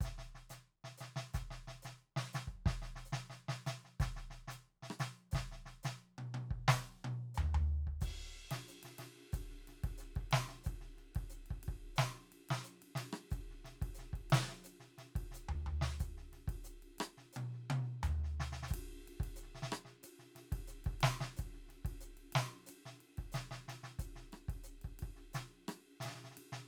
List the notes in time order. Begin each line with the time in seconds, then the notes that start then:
0.01 kick, snare, hi-hat pedal
0.18 snare
0.23 hi-hat pedal
0.35 snare
0.50 snare, hi-hat pedal
0.84 snare
0.98 snare, hi-hat pedal
1.16 snare
1.34 kick, snare, hi-hat pedal
1.51 snare
1.68 snare
1.83 snare, hi-hat pedal
2.17 snare
2.33 snare, hi-hat pedal
2.48 kick
2.66 kick, snare
2.82 snare
2.96 snare
3.05 hi-hat pedal
3.13 snare
3.30 snare
3.49 snare
3.67 snare, hi-hat pedal
3.85 snare
4.00 kick, snare, hi-hat pedal
4.16 snare
4.31 snare
4.48 snare, hi-hat pedal
4.83 snare
4.90 cross-stick
4.99 snare, hi-hat pedal
5.32 kick, snare, hi-hat pedal
5.52 snare
5.66 snare
5.83 snare, hi-hat pedal
6.18 high tom
6.34 high tom
6.51 kick
6.68 snare
7.05 high tom
7.35 floor tom, hi-hat pedal
7.55 floor tom
7.87 kick
8.01 kick, hi-hat pedal, ride
8.51 snare, ride
8.68 hi-hat pedal
8.83 snare, ride
8.99 snare, ride
9.16 snare
9.19 snare
9.33 kick, hi-hat pedal, ride
9.51 snare
9.68 snare, ride
9.84 kick, ride
9.98 snare, hi-hat pedal
10.16 kick, ride
10.31 snare, ride
10.48 snare
10.64 kick, hi-hat pedal, ride
10.81 snare
10.98 snare, ride
11.15 kick, ride
11.30 hi-hat pedal
11.46 ride
11.51 kick
11.63 ride
11.68 kick
11.96 snare, hi-hat pedal, ride
12.15 snare
12.32 ride
12.49 snare, ride
12.64 hi-hat pedal
12.82 ride
12.96 snare, ride
13.13 cross-stick
13.31 kick, hi-hat pedal, ride
13.51 snare
13.65 snare, ride
13.82 kick, ride
13.95 snare, hi-hat pedal
14.13 kick, ride
14.30 snare, ride
14.49 snare
14.64 hi-hat pedal, ride
14.80 snare
14.98 snare, ride
15.16 kick, ride
15.32 snare, hi-hat pedal
15.49 floor tom
15.66 floor tom
15.82 snare
16.00 kick, hi-hat pedal, ride
16.18 snare
16.33 snare, ride
16.48 kick, ride
16.64 hi-hat pedal
16.83 ride
16.99 cross-stick, ride
17.18 snare
17.33 hi-hat pedal, high tom
17.54 snare
17.70 high tom
17.84 snare
18.03 floor tom, hi-hat pedal
18.24 snare
18.35 kick
18.40 snare
18.53 snare
18.63 snare
18.68 kick, hi-hat pedal
18.74 ride
19.08 ride
19.20 kick, ride
19.36 hi-hat pedal
19.43 snare
19.55 snare
19.63 snare
19.72 cross-stick
19.85 snare
20.03 hi-hat pedal, ride
20.19 snare
20.36 snare, ride
20.52 kick, ride
20.68 snare, hi-hat pedal
20.85 kick, ride
21.01 snare, ride
21.21 snare
21.37 kick, hi-hat pedal, ride
21.54 snare
21.69 snare, ride
21.85 kick, ride
22.00 snare, hi-hat pedal
22.17 ride
22.33 snare, ride
22.53 snare
22.67 hi-hat pedal, ride
22.86 snare
23.01 ride
23.18 kick, ride
23.32 snare, hi-hat pedal, ride
23.51 snare
23.68 snare, ride
23.84 snare
23.99 kick, hi-hat pedal, ride
24.16 snare
24.33 cross-stick, ride
24.49 kick, ride
24.64 hi-hat pedal
24.82 kick, ride
24.99 kick, ride
25.16 snare
25.34 snare, hi-hat pedal, ride
25.68 cross-stick, ride
26.01 snare, hi-hat pedal, ride
26.06 snare
26.10 snare
26.15 snare
26.24 snare
26.31 snare
26.37 ride
26.53 snare